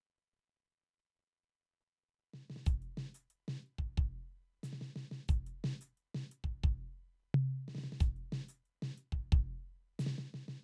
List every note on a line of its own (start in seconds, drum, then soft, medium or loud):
2.34 snare soft
2.50 snare soft
2.56 snare soft
2.66 kick medium
2.66 hi-hat pedal medium
2.82 open hi-hat soft
2.97 snare soft
3.14 hi-hat pedal medium
3.30 closed hi-hat soft
3.48 snare soft
3.66 closed hi-hat soft
3.78 kick soft
3.98 kick medium
4.63 snare soft
4.63 hi-hat pedal medium
4.73 snare soft
4.81 snare soft
4.96 snare soft
5.11 snare soft
5.28 kick medium
5.28 hi-hat pedal medium
5.47 closed hi-hat soft
5.64 snare medium
5.81 hi-hat pedal medium
5.97 closed hi-hat soft
6.15 snare soft
6.31 closed hi-hat soft
6.44 kick soft
6.64 kick medium
7.34 floor tom loud
7.68 snare soft
7.75 snare soft
7.78 snare soft
7.84 snare soft
7.92 snare soft
8.00 kick medium
8.00 hi-hat pedal medium
8.16 closed hi-hat soft
8.32 snare medium
8.48 hi-hat pedal medium
8.65 closed hi-hat soft
8.82 snare medium
8.98 closed hi-hat soft
9.12 kick soft
9.32 kick medium
9.99 snare medium
9.99 hi-hat pedal medium
10.07 snare medium
10.18 snare soft
10.34 snare soft
10.48 snare soft